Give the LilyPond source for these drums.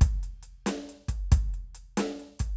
\new DrumStaff \drummode { \time 4/4 \tempo 4 = 92 \tuplet 3/2 { <bd hh>8 hh8 hh8 <sn hh>8 hh8 <bd hh>8 <bd hh>8 hh8 hh8 <sn hh>8 hh8 <hh bd>8 } | }